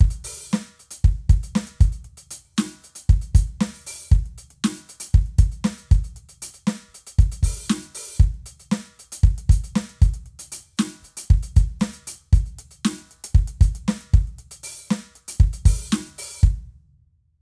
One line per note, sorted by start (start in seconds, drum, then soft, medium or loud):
0.01 kick loud
0.01 closed hi-hat soft
0.11 closed hi-hat medium
0.25 open hi-hat loud
0.39 open hi-hat soft
0.52 snare loud
0.52 hi-hat pedal soft
0.68 closed hi-hat soft
0.80 closed hi-hat medium
0.92 closed hi-hat loud
1.05 kick loud
1.05 closed hi-hat soft
1.20 closed hi-hat soft
1.30 kick loud
1.30 closed hi-hat medium
1.44 closed hi-hat medium
1.56 snare loud
1.68 closed hi-hat medium
1.82 closed hi-hat medium
1.82 kick loud
1.93 closed hi-hat soft
2.05 closed hi-hat soft
2.18 closed hi-hat medium
2.32 open hi-hat loud
2.46 open hi-hat soft
2.57 snare loud
2.57 hi-hat pedal soft
2.72 closed hi-hat soft
2.85 closed hi-hat medium
2.96 closed hi-hat medium
3.10 kick loud
3.10 closed hi-hat medium
3.22 closed hi-hat soft
3.36 closed hi-hat loud
3.36 kick loud
3.48 closed hi-hat soft
3.62 snare loud
3.74 open hi-hat medium
3.88 open hi-hat loud
4.02 open hi-hat soft
4.10 kick loud
4.10 hi-hat pedal soft
4.14 closed hi-hat soft
4.27 closed hi-hat soft
4.39 closed hi-hat medium
4.51 closed hi-hat soft
4.65 snare loud
4.77 closed hi-hat soft
4.90 closed hi-hat medium
5.01 closed hi-hat loud
5.15 kick loud
5.15 closed hi-hat soft
5.27 closed hi-hat soft
5.39 kick loud
5.39 closed hi-hat medium
5.53 closed hi-hat soft
5.65 snare loud
5.79 closed hi-hat soft
5.92 closed hi-hat medium
5.92 kick loud
6.05 closed hi-hat soft
6.17 closed hi-hat medium
6.30 closed hi-hat medium
6.43 closed hi-hat loud
6.55 closed hi-hat medium
6.68 snare loud
6.83 closed hi-hat soft
6.89 kick soft
6.95 closed hi-hat medium
7.08 closed hi-hat medium
7.20 kick loud
7.20 closed hi-hat medium
7.33 closed hi-hat medium
7.44 open hi-hat loud
7.44 kick medium
7.59 open hi-hat soft
7.69 snare loud
7.69 hi-hat pedal soft
7.83 closed hi-hat soft
7.96 open hi-hat loud
8.10 open hi-hat soft
8.18 kick loud
8.18 hi-hat pedal soft
8.24 closed hi-hat soft
8.35 closed hi-hat soft
8.47 closed hi-hat medium
8.60 closed hi-hat soft
8.72 snare loud
8.87 closed hi-hat soft
9.00 closed hi-hat medium
9.13 closed hi-hat loud
9.24 kick loud
9.24 closed hi-hat soft
9.39 closed hi-hat medium
9.50 closed hi-hat medium
9.50 kick loud
9.65 closed hi-hat medium
9.76 snare loud
9.90 closed hi-hat soft
10.03 closed hi-hat medium
10.03 kick loud
10.15 closed hi-hat medium
10.27 closed hi-hat soft
10.40 closed hi-hat loud
10.53 open hi-hat loud
10.65 open hi-hat soft
10.78 snare loud
10.78 hi-hat pedal soft
10.92 closed hi-hat soft
11.03 closed hi-hat medium
11.03 kick soft
11.18 closed hi-hat loud
11.31 kick loud
11.31 closed hi-hat soft
11.44 closed hi-hat medium
11.57 open hi-hat medium
11.57 kick loud
11.81 snare loud
11.81 hi-hat pedal soft
11.94 closed hi-hat medium
12.08 closed hi-hat loud
12.34 closed hi-hat medium
12.34 kick loud
12.47 closed hi-hat soft
12.60 closed hi-hat medium
12.72 closed hi-hat soft
12.86 snare loud
12.99 closed hi-hat soft
13.12 closed hi-hat medium
13.25 closed hi-hat loud
13.35 kick loud
13.35 closed hi-hat soft
13.48 closed hi-hat medium
13.62 closed hi-hat medium
13.62 kick loud
13.76 closed hi-hat medium
13.89 snare loud
14.02 closed hi-hat soft
14.15 kick loud
14.15 closed hi-hat soft
14.28 closed hi-hat soft
14.39 closed hi-hat medium
14.52 closed hi-hat medium
14.64 open hi-hat loud
14.78 open hi-hat soft
14.88 snare loud
14.88 hi-hat pedal soft
15.04 closed hi-hat soft
15.16 closed hi-hat medium
15.29 closed hi-hat loud
15.41 kick loud
15.41 closed hi-hat soft
15.54 closed hi-hat medium
15.66 open hi-hat loud
15.66 kick loud
15.82 open hi-hat soft
15.92 snare loud
15.92 hi-hat pedal soft
16.07 closed hi-hat soft
16.19 open hi-hat loud
16.41 kick loud
16.41 hi-hat pedal soft